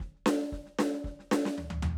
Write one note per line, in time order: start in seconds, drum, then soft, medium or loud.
0.00 kick soft
0.00 snare soft
0.15 snare soft
0.26 snare loud
0.41 snare soft
0.52 kick soft
0.52 snare soft
0.66 snare soft
0.79 snare loud
0.93 snare soft
1.04 kick soft
1.04 snare soft
1.19 snare soft
1.31 snare loud
1.45 snare loud
1.58 floor tom medium
1.70 floor tom loud
1.82 floor tom loud